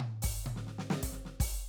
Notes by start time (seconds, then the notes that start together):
0.00 high tom
0.22 open hi-hat, kick
0.44 hi-hat pedal, high tom
0.56 snare
0.67 snare
0.78 snare
0.90 snare
1.03 kick, open hi-hat
1.09 snare, hi-hat pedal
1.18 kick
1.25 snare
1.40 open hi-hat, kick